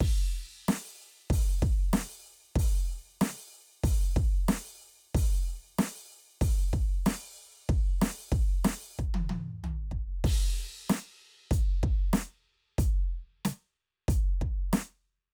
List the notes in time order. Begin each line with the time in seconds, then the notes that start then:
0.01 kick, crash
0.69 open hi-hat, snare
1.31 open hi-hat, kick
1.63 kick
1.94 open hi-hat, snare
2.01 snare
2.56 open hi-hat, kick
3.22 open hi-hat, snare
3.30 snare
3.84 open hi-hat, kick
4.17 kick
4.49 open hi-hat, snare
5.15 open hi-hat, kick
5.79 open hi-hat, snare
6.42 open hi-hat, kick
6.74 kick
7.06 open hi-hat, snare
7.70 kick
8.02 open hi-hat, snare
8.32 kick
8.65 open hi-hat, snare
8.98 kick, hi-hat pedal
9.15 high tom
9.30 high tom
9.64 floor tom
9.92 kick
10.25 kick, crash
10.90 open hi-hat, snare
11.51 closed hi-hat, kick
11.84 kick
12.14 closed hi-hat, snare
12.79 closed hi-hat, kick
13.45 closed hi-hat, snare
14.09 closed hi-hat, kick
14.42 kick
14.73 closed hi-hat, snare